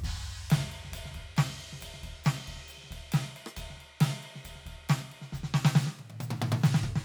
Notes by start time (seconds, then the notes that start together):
0.01 kick, percussion, crash
0.17 kick, snare
0.23 snare
0.44 kick
0.50 snare, ride, percussion
0.72 ride
0.85 snare
0.93 kick, ride, percussion
0.98 kick
1.06 snare
1.11 kick, snare, ride
1.37 snare, percussion, ride
1.61 ride
1.73 snare
1.81 kick, ride, percussion
1.94 snare
2.01 kick, snare, ride
2.24 snare, percussion, ride
2.48 kick, ride
2.54 kick, snare
2.68 ride, percussion
2.78 snare
2.84 snare
2.91 kick, ride
2.97 kick
3.12 snare, ride, percussion
3.36 ride
3.46 cross-stick
3.57 kick, ride bell, percussion
3.63 kick
3.70 snare
3.77 snare, ride
4.01 snare, ride, percussion
4.23 ride
4.36 snare
4.45 kick, ride, percussion
4.56 snare
4.63 kick, snare
4.67 ride
4.89 snare, ride, percussion
5.12 ride
5.22 snare
5.33 kick, snare, percussion
5.39 kick
5.44 snare
5.54 snare
5.65 snare
5.75 snare
5.80 percussion
5.87 snare
5.99 high tom
6.10 high tom
6.21 high tom, percussion
6.31 high tom
6.42 high tom
6.52 high tom
6.64 snare, percussion
6.75 snare
6.84 kick, mid tom
6.90 kick
6.96 snare